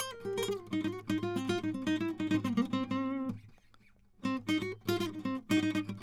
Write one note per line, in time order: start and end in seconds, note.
0.00 0.11 C5
0.12 0.35 A#4
0.26 0.47 G4
0.38 0.53 A#4
0.49 0.60 G4
0.61 0.73 F4
0.73 0.85 D#4
0.85 1.05 F#4
1.10 1.21 D#4
1.23 1.42 F4
1.37 1.54 C4
1.50 1.61 F4
1.65 1.76 D#4
1.75 1.88 C4
1.88 1.98 D#4
2.02 2.16 E4
2.21 2.29 D#4
2.32 2.42 C4
2.32 2.41 D#4
2.45 2.56 A#3
2.58 2.68 C4
2.74 2.86 C4
2.92 3.33 C4
4.26 4.42 C4
4.49 4.60 D#4
4.63 4.77 F#4
4.89 5.07 F4
5.07 5.23 D#4
5.26 5.46 C4
5.52 5.62 D#4
5.64 5.74 D#4
5.76 5.84 D#4